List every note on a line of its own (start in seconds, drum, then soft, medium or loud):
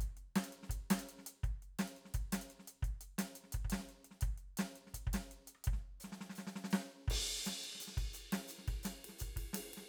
0.01 closed hi-hat medium
0.17 closed hi-hat soft
0.36 snare medium
0.36 closed hi-hat medium
0.44 closed hi-hat medium
0.53 closed hi-hat soft
0.63 snare soft
0.70 kick soft
0.70 closed hi-hat medium
0.91 snare medium
0.91 closed hi-hat loud
0.97 snare soft
0.97 closed hi-hat medium
1.09 closed hi-hat medium
1.19 snare soft
1.27 closed hi-hat medium
1.44 kick soft
1.44 closed hi-hat soft
1.62 closed hi-hat soft
1.79 snare medium
1.79 closed hi-hat medium
1.88 closed hi-hat soft
1.97 closed hi-hat soft
2.05 snare soft
2.14 kick soft
2.14 closed hi-hat medium
2.33 snare medium
2.33 closed hi-hat medium
2.42 closed hi-hat medium
2.50 closed hi-hat soft
2.59 snare soft
2.68 closed hi-hat medium
2.83 kick soft
2.83 closed hi-hat soft
3.01 closed hi-hat medium
3.19 snare medium
3.19 closed hi-hat medium
3.36 closed hi-hat medium
3.44 snare soft
3.53 kick soft
3.53 closed hi-hat medium
3.65 kick soft
3.70 snare medium
3.70 closed hi-hat medium
3.79 snare soft
3.89 closed hi-hat soft
4.05 closed hi-hat soft
4.11 snare soft
4.21 kick medium
4.21 closed hi-hat medium
4.38 closed hi-hat soft
4.57 snare medium
4.57 closed hi-hat medium
4.76 closed hi-hat soft
4.87 snare soft
4.94 kick soft
4.94 closed hi-hat medium
5.07 kick soft
5.13 snare medium
5.13 closed hi-hat medium
5.31 closed hi-hat soft
5.48 closed hi-hat medium
5.55 cross-stick soft
5.64 kick medium
5.64 closed hi-hat medium
5.73 snare soft
6.00 snare soft
6.00 hi-hat pedal medium
6.12 snare soft
6.21 snare soft
6.30 snare soft
6.35 snare soft
6.35 hi-hat pedal medium
6.47 snare soft
6.56 snare soft
6.64 snare soft
6.71 snare medium
6.71 hi-hat pedal medium
7.08 kick soft
7.08 ride loud
7.44 snare medium
7.44 hi-hat pedal medium
7.44 ride bell soft
7.64 ride bell soft
7.75 snare soft
7.80 hi-hat pedal medium
7.80 ride medium
7.88 snare soft
7.97 kick soft
7.97 ride bell soft
8.14 hi-hat pedal medium
8.14 ride bell soft
8.33 snare medium
8.33 ride medium
8.48 hi-hat pedal medium
8.48 ride bell soft
8.59 snare soft
8.68 kick soft
8.68 ride bell soft
8.83 snare medium
8.83 hi-hat pedal medium
8.83 ride bell medium
9.05 ride medium
9.09 snare soft
9.19 kick soft
9.19 hi-hat pedal medium
9.19 ride bell medium
9.36 kick soft
9.36 ride medium
9.53 snare soft
9.53 hi-hat pedal medium
9.53 ride loud
9.74 snare soft
9.74 ride medium